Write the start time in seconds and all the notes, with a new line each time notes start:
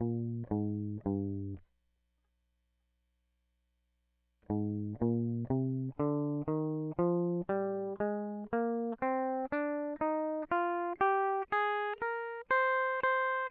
0.03 A#2
0.55 G#2
1.08 G2
4.52 G#2
5.04 A#2
5.52 C3
6.01 D3
6.49 D#3
7.00 F3
7.50 G3
8.01 G#3
8.54 A#3
9.03 C4
9.53 D4
10.02 D#4
10.52 F4
11.01 G4
11.53 G#4
12.02 A#4
12.51 C5
13.04 C5